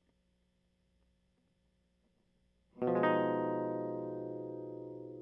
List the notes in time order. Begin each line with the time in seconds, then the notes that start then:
2.84 B2
2.89 F3
2.96 G#3
3.04 D#4